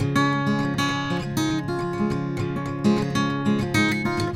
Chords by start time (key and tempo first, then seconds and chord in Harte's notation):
C# major, 100 BPM
0.00 C#:maj